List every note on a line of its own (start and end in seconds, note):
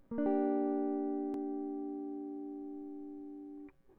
0.12 2.94 A#3
0.19 3.71 D4
0.27 3.71 G4